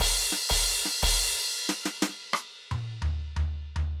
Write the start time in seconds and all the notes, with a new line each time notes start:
0.01 kick, crash
0.32 snare
0.49 kick, crash
0.86 snare
1.02 kick, crash
1.69 snare
1.86 snare
2.02 snare
2.09 snare
2.33 cross-stick
2.71 mid tom
3.02 floor tom
3.36 floor tom
3.76 floor tom